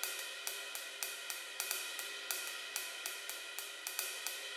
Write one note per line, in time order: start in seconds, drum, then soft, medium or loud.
0.04 ride loud
0.20 ride medium
0.48 ride loud
0.76 ride medium
1.03 ride loud
1.31 ride medium
1.61 ride loud
1.72 ride loud
2.00 ride medium
2.31 ride loud
2.48 ride medium
2.77 ride loud
3.06 ride loud
3.30 ride medium
3.59 ride medium
3.87 ride medium
4.00 ride loud
4.27 ride loud